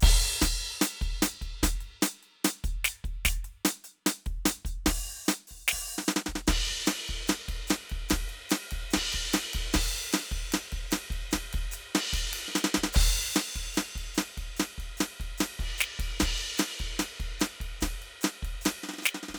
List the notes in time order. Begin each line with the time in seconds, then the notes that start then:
0.01 kick, hi-hat pedal, crash
0.06 snare
0.21 closed hi-hat
0.42 closed hi-hat, kick, snare, hi-hat pedal
0.61 closed hi-hat
0.82 closed hi-hat, snare
1.02 kick, closed hi-hat
1.23 closed hi-hat, snare
1.42 kick, closed hi-hat
1.63 closed hi-hat, kick, snare, hi-hat pedal
1.81 closed hi-hat
2.02 closed hi-hat, snare, hi-hat pedal
2.23 closed hi-hat
2.45 closed hi-hat, snare
2.64 closed hi-hat, kick
2.85 closed hi-hat, snare
3.05 kick, closed hi-hat
3.25 open hi-hat, kick, snare, hi-hat pedal
3.45 closed hi-hat
3.65 closed hi-hat, snare
3.84 closed hi-hat
4.07 closed hi-hat, snare
4.26 kick, closed hi-hat
4.46 closed hi-hat, snare
4.65 closed hi-hat, kick
4.86 open hi-hat, kick, snare
5.07 open hi-hat
5.26 closed hi-hat, snare, hi-hat pedal
5.48 open hi-hat, kick
5.68 open hi-hat, snare
5.73 kick
5.88 open hi-hat
5.99 snare
6.08 snare, hi-hat pedal
6.17 snare
6.27 kick, snare
6.36 snare
6.47 kick, snare, hi-hat pedal, ride
6.66 ride
6.71 kick
6.86 snare, hi-hat pedal, ride
7.08 kick, ride
7.28 snare, hi-hat pedal, ride
7.49 kick, ride
7.68 snare, hi-hat pedal, ride
7.90 kick, ride
8.09 kick, snare, hi-hat pedal, ride
8.23 kick
8.30 ride
8.50 snare, hi-hat pedal, ride
8.71 kick, ride
8.91 snare, hi-hat pedal, ride
8.97 kick
9.13 kick, ride
9.33 snare, hi-hat pedal, ride
9.54 kick, ride
9.73 kick, snare, hi-hat pedal, crash
10.13 snare, hi-hat pedal, ride
10.20 snare
10.32 kick, ride
10.52 snare, hi-hat pedal, ride
10.72 kick, ride
10.91 snare, hi-hat pedal, ride
11.11 kick, ride
11.31 kick, snare, hi-hat pedal, ride
11.53 kick, ride
11.72 hi-hat pedal, ride
11.95 snare, ride
12.13 kick, hi-hat pedal, ride
12.34 ride
12.48 snare
12.56 snare, hi-hat pedal
12.65 snare
12.78 kick
12.84 snare
12.93 kick, hi-hat pedal, crash
13.20 kick
13.34 snare, hi-hat pedal, ride
13.56 kick, ride
13.74 snare, hi-hat pedal, ride
13.96 kick, ride
14.15 snare, hi-hat pedal
14.19 ride
14.38 kick, ride
14.57 snare, hi-hat pedal, ride
14.78 kick, ride
14.98 snare, hi-hat pedal
15.02 ride
15.20 kick, ride
15.38 snare, hi-hat pedal, ride
15.60 kick, ride
15.68 kick
15.78 snare, hi-hat pedal
16.00 kick, ride
16.20 kick, snare, hi-hat pedal, ride
16.38 ride
16.58 snare, hi-hat pedal, ride
16.80 kick, ride
16.99 snare, hi-hat pedal, ride
17.20 kick, ride
17.40 snare, hi-hat pedal, ride
17.61 kick, ride
17.81 kick, snare, hi-hat pedal, ride
18.02 ride
18.21 snare, hi-hat pedal, ride
18.43 kick, ride
18.62 hi-hat pedal
18.66 snare, ride
18.84 snare
18.89 snare
18.99 snare
19.03 snare, hi-hat pedal
19.06 snare
19.15 snare
19.23 snare
19.29 kick, snare
19.35 snare